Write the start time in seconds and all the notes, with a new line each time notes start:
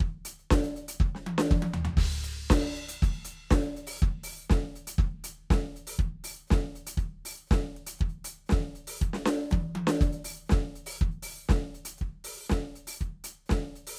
0.01 kick, closed hi-hat
0.13 closed hi-hat
0.26 closed hi-hat
0.40 closed hi-hat
0.51 kick, snare
0.64 closed hi-hat
0.77 closed hi-hat
0.89 closed hi-hat
1.01 kick, closed hi-hat
1.16 snare
1.27 high tom
1.39 snare
1.52 kick, high tom
1.63 high tom
1.74 floor tom
1.86 floor tom
1.98 kick, crash
2.12 closed hi-hat
2.24 closed hi-hat
2.51 kick, snare, crash
2.76 closed hi-hat
2.89 closed hi-hat
3.03 closed hi-hat, kick
3.13 closed hi-hat
3.26 closed hi-hat
3.51 kick, snare, hi-hat pedal
3.63 closed hi-hat
3.77 closed hi-hat
3.88 open hi-hat
3.99 kick, closed hi-hat, hi-hat pedal
4.10 closed hi-hat
4.24 open hi-hat
4.40 open hi-hat
4.44 hi-hat pedal
4.51 kick, snare
4.76 closed hi-hat
4.88 closed hi-hat
4.99 kick, closed hi-hat
5.12 closed hi-hat
5.25 closed hi-hat
5.39 closed hi-hat
5.51 kick, snare
5.64 closed hi-hat
5.77 closed hi-hat
5.88 open hi-hat
5.95 hi-hat pedal
6.00 kick, closed hi-hat
6.10 closed hi-hat
6.25 open hi-hat
6.48 snare, hi-hat pedal
6.52 kick
6.76 closed hi-hat
6.88 closed hi-hat
6.94 hi-hat pedal
6.98 closed hi-hat, kick
7.10 closed hi-hat
7.26 open hi-hat
7.48 hi-hat pedal
7.52 kick, snare
7.64 closed hi-hat
7.77 closed hi-hat
7.87 closed hi-hat
7.97 closed hi-hat, hi-hat pedal
8.01 kick
8.10 closed hi-hat
8.25 open hi-hat
8.39 open hi-hat
8.47 snare, hi-hat pedal
8.53 kick
8.63 closed hi-hat
8.76 closed hi-hat
8.88 open hi-hat
9.00 closed hi-hat, kick, hi-hat pedal
9.14 snare
9.26 snare
9.51 kick, hi-hat pedal, high tom
9.76 high tom
9.88 snare
10.02 closed hi-hat, kick
10.13 closed hi-hat
10.25 open hi-hat
10.47 snare, hi-hat pedal
10.53 kick
10.64 closed hi-hat
10.76 closed hi-hat
10.87 open hi-hat
10.97 hi-hat pedal
11.01 kick, closed hi-hat
11.12 closed hi-hat
11.23 open hi-hat
11.46 snare, hi-hat pedal
11.50 kick
11.75 closed hi-hat
11.86 closed hi-hat
11.98 closed hi-hat, hi-hat pedal
12.02 kick
12.25 open hi-hat
12.47 snare, hi-hat pedal
12.52 kick
12.74 closed hi-hat, kick
12.88 open hi-hat
12.97 closed hi-hat, hi-hat pedal
13.02 kick
13.09 closed hi-hat
13.25 open hi-hat
13.41 open hi-hat
13.47 snare, hi-hat pedal
13.52 kick
13.66 closed hi-hat
13.76 closed hi-hat
13.88 open hi-hat